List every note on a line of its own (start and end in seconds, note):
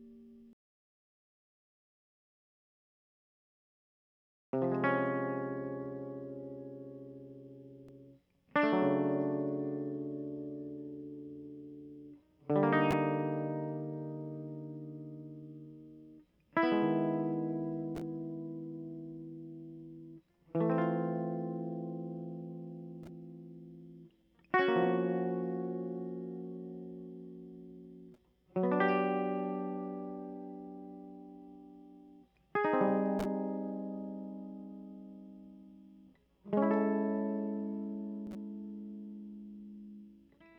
4.55 8.19 C3
4.63 8.17 F3
4.73 8.13 G#3
4.84 8.20 C#4
8.56 12.22 D4
8.64 12.12 A3
8.74 12.18 F#3
8.84 12.18 C#3
12.51 16.23 D3
12.57 16.24 G3
12.64 16.21 A#3
12.73 16.26 D#4
16.57 20.22 E4
16.64 20.19 B3
16.73 20.22 G#3
16.83 20.21 D#3
20.56 24.09 E3
20.61 24.12 A3
20.70 24.07 C4
20.79 24.11 F4
24.54 28.19 F#4
24.60 28.13 C#4
24.69 28.19 A#3
24.77 28.17 F3
24.84 25.46 B2
28.57 32.27 F#3
28.64 32.30 B3
28.72 32.25 D4
28.81 32.25 G4
32.56 35.50 G#4
32.65 36.12 D#4
32.74 36.15 C4
32.82 36.14 G3
32.89 32.95 C#3
36.54 40.32 G#3
36.58 40.49 C#4
36.63 40.32 E4
36.71 39.41 A4